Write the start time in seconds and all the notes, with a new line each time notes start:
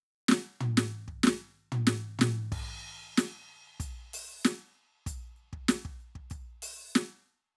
0.29 snare
0.32 snare
0.61 floor tom
0.78 snare
1.08 kick
1.24 snare
1.28 snare
1.73 floor tom
1.87 snare
2.19 snare, floor tom
2.52 kick, ride
3.18 snare, percussion
3.80 kick, percussion
4.14 percussion
4.45 snare, percussion
4.74 percussion
5.07 kick, percussion
5.37 percussion
5.53 kick
5.69 snare, percussion
5.85 kick
6.01 percussion
6.16 kick
6.31 kick, percussion
6.63 percussion
6.96 snare, percussion